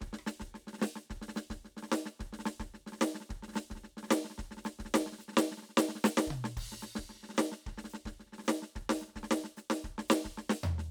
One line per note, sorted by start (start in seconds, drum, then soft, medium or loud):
0.01 kick soft
0.01 snare soft
0.07 kick soft
0.13 snare medium
0.19 cross-stick soft
0.27 snare medium
0.27 hi-hat pedal soft
0.40 kick soft
0.40 snare soft
0.55 snare soft
0.67 snare soft
0.73 snare soft
0.79 snare soft
0.82 snare loud
0.82 hi-hat pedal soft
0.96 snare soft
1.10 kick soft
1.10 snare soft
1.16 kick soft
1.22 snare soft
1.29 snare soft
1.35 snare soft
1.35 hi-hat pedal soft
1.36 snare medium
1.50 kick soft
1.50 snare soft
1.56 kick soft
1.65 snare soft
1.77 snare soft
1.83 snare soft
1.89 snare soft
1.92 snare loud
1.92 hi-hat pedal medium
2.06 snare soft
2.20 kick soft
2.20 snare soft
2.27 kick soft
2.33 snare soft
2.39 snare soft
2.45 snare medium
2.45 hi-hat pedal soft
2.60 kick soft
2.60 snare soft
2.74 snare soft
2.87 snare soft
2.92 snare soft
2.98 snare soft
3.01 snare loud
3.01 hi-hat pedal soft
3.15 snare soft
3.21 snare soft
3.30 kick soft
3.30 snare soft
3.37 kick soft
3.43 snare soft
3.48 snare soft
3.53 snare soft
3.53 hi-hat pedal soft
3.56 snare medium
3.70 kick soft
3.70 snare soft
3.76 snare soft
3.84 snare soft
3.97 snare soft
4.03 snare soft
4.08 snare soft
4.11 snare loud
4.11 hi-hat pedal soft
4.25 snare soft
4.30 snare soft
4.38 kick soft
4.38 snare soft
4.45 kick soft
4.51 snare soft
4.57 snare soft
4.63 snare soft
4.63 hi-hat pedal soft
4.65 snare medium
4.79 kick soft
4.79 snare soft
4.85 snare soft
4.94 snare loud
5.06 snare soft
5.12 snare soft
5.19 snare soft
5.19 hi-hat pedal soft
5.28 snare soft
5.32 snare soft
5.36 snare soft
5.36 snare loud
5.52 snare soft
5.58 snare soft
5.63 snare soft
5.69 snare soft
5.77 snare loud
5.77 hi-hat pedal medium
5.89 snare soft
5.95 snare soft
6.04 snare loud
6.04 hi-hat pedal medium
6.17 snare loud
6.27 kick soft
6.27 mid tom medium
6.33 kick soft
6.44 snare medium
6.57 kick medium
6.57 crash medium
6.71 kick soft
6.71 snare soft
6.81 snare soft
6.81 hi-hat pedal soft
6.96 kick soft
6.96 snare medium
7.10 snare soft
7.15 snare soft
7.20 snare soft
7.23 snare soft
7.29 snare soft
7.34 snare soft
7.34 hi-hat pedal soft
7.38 snare loud
7.52 snare soft
7.67 kick soft
7.67 snare soft
7.73 kick soft
7.78 snare soft
7.84 snare soft
7.90 snare soft
7.90 hi-hat pedal soft
8.06 kick soft
8.06 snare soft
8.20 snare soft
8.27 snare soft
8.31 snare soft
8.39 snare soft
8.44 snare soft
8.44 hi-hat pedal soft
8.48 snare loud
8.62 snare soft
8.76 kick soft
8.76 snare soft
8.82 kick soft
8.90 snare loud
8.99 snare soft
8.99 hi-hat pedal soft
9.08 snare soft
9.14 kick soft
9.14 snare soft
9.16 snare soft
9.23 snare soft
9.31 snare loud
9.44 snare soft
9.57 snare soft
9.57 hi-hat pedal soft
9.70 snare medium
9.84 kick soft
9.84 snare soft
9.90 kick soft
9.98 snare medium
10.09 snare loud
10.09 hi-hat pedal soft
10.25 kick soft
10.25 snare soft
10.38 snare soft
10.50 snare loud
10.63 floor tom loud
10.63 hi-hat pedal soft
10.79 snare soft